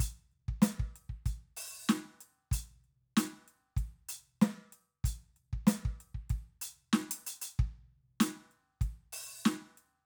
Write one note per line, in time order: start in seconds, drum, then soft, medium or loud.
0.01 closed hi-hat loud
0.01 kick medium
0.33 closed hi-hat soft
0.49 kick medium
0.63 closed hi-hat loud
0.63 snare loud
0.81 kick medium
0.97 closed hi-hat soft
1.11 kick soft
1.27 closed hi-hat medium
1.27 kick medium
1.58 open hi-hat loud
1.90 snare loud
1.90 closed hi-hat medium
1.90 hi-hat pedal medium
2.22 closed hi-hat medium
2.53 closed hi-hat loud
2.53 kick medium
2.85 closed hi-hat soft
3.18 closed hi-hat loud
3.18 snare loud
3.49 closed hi-hat soft
3.78 kick medium
3.78 closed hi-hat soft
4.10 open hi-hat loud
4.43 snare loud
4.43 closed hi-hat medium
4.43 hi-hat pedal medium
4.74 closed hi-hat soft
5.05 closed hi-hat loud
5.05 kick medium
5.38 closed hi-hat soft
5.54 kick medium
5.68 closed hi-hat loud
5.68 snare loud
5.86 kick medium
6.02 closed hi-hat soft
6.16 kick soft
6.31 kick medium
6.31 closed hi-hat soft
6.63 closed hi-hat loud
6.94 snare loud
7.12 closed hi-hat loud
7.28 closed hi-hat loud
7.43 closed hi-hat loud
7.60 kick medium
8.21 closed hi-hat loud
8.21 snare loud
8.52 closed hi-hat soft
8.82 kick medium
8.82 closed hi-hat soft
9.14 open hi-hat loud
9.46 snare loud
9.46 closed hi-hat soft
9.46 hi-hat pedal medium
9.79 closed hi-hat soft